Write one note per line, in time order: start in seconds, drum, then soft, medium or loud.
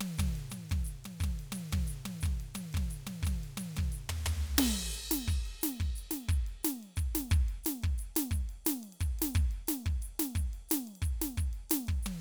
0.01 high tom loud
0.01 ride soft
0.18 kick medium
0.18 hi-hat pedal medium
0.18 high tom medium
0.18 ride soft
0.36 ride soft
0.50 hi-hat pedal medium
0.50 high tom medium
0.50 ride soft
0.70 kick medium
0.70 high tom medium
0.70 ride soft
0.85 hi-hat pedal medium
0.85 ride soft
1.05 high tom medium
1.05 ride soft
1.20 kick medium
1.20 hi-hat pedal medium
1.20 high tom medium
1.20 ride soft
1.39 ride soft
1.52 hi-hat pedal medium
1.52 high tom medium
1.52 ride soft
1.72 kick medium
1.72 high tom medium
1.72 ride soft
1.87 hi-hat pedal medium
1.87 ride soft
2.06 high tom medium
2.06 ride soft
2.21 kick medium
2.21 hi-hat pedal medium
2.21 ride soft
2.26 high tom medium
2.40 ride soft
2.55 hi-hat pedal medium
2.55 high tom medium
2.55 ride soft
2.73 kick medium
2.73 high tom medium
2.73 ride soft
2.90 hi-hat pedal medium
2.90 ride soft
3.07 high tom medium
3.07 ride soft
3.23 kick medium
3.23 hi-hat pedal medium
3.23 ride soft
3.27 high tom medium
3.44 ride soft
3.58 hi-hat pedal medium
3.58 high tom medium
3.58 ride soft
3.76 kick medium
3.76 high tom medium
3.76 ride soft
3.92 hi-hat pedal medium
3.92 ride soft
4.09 floor tom loud
4.25 floor tom loud
4.25 hi-hat pedal medium
4.57 snare loud
4.57 hi-hat pedal medium
4.57 crash medium
4.91 hi-hat pedal medium
4.91 ride soft
5.11 snare medium
5.11 ride soft
5.28 kick medium
5.28 hi-hat pedal medium
5.28 ride soft
5.46 ride soft
5.62 snare medium
5.62 hi-hat pedal medium
5.62 ride soft
5.80 kick medium
5.80 ride soft
5.96 hi-hat pedal medium
5.96 ride soft
6.11 snare medium
6.11 ride soft
6.29 kick medium
6.29 hi-hat pedal medium
6.29 ride soft
6.47 ride soft
6.64 snare medium
6.64 hi-hat pedal medium
6.64 ride soft
6.83 ride soft
6.96 kick medium
6.96 hi-hat pedal medium
6.96 ride soft
7.15 snare medium
7.15 ride soft
7.31 kick medium
7.31 hi-hat pedal medium
7.31 ride soft
7.49 ride soft
7.64 snare medium
7.64 hi-hat pedal medium
7.64 ride soft
7.83 kick medium
7.83 ride soft
7.98 hi-hat pedal medium
7.98 ride soft
8.16 snare medium
8.16 ride soft
8.31 kick medium
8.31 hi-hat pedal medium
8.31 ride soft
8.49 ride soft
8.65 snare medium
8.65 hi-hat pedal medium
8.65 ride medium
8.83 ride soft
8.93 ride soft
9.00 kick medium
9.00 hi-hat pedal medium
9.00 ride soft
9.19 snare medium
9.19 ride soft
9.34 kick medium
9.34 hi-hat pedal medium
9.34 ride soft
9.51 ride soft
9.68 snare medium
9.68 hi-hat pedal medium
9.68 ride soft
9.86 kick medium
9.86 ride soft
10.02 hi-hat pedal medium
10.02 ride soft
10.20 snare medium
10.20 ride soft
10.35 kick medium
10.35 hi-hat pedal medium
10.35 ride soft
10.53 ride soft
10.69 snare medium
10.69 hi-hat pedal medium
10.69 ride soft
10.88 ride soft
10.96 ride soft
11.02 kick medium
11.02 hi-hat pedal medium
11.02 ride soft
11.22 snare medium
11.22 ride soft
11.38 kick medium
11.38 hi-hat pedal medium
11.38 ride soft
11.53 ride soft
11.70 snare medium
11.70 hi-hat pedal medium
11.70 ride medium
11.88 kick medium
11.88 ride soft
12.03 hi-hat pedal medium
12.03 high tom medium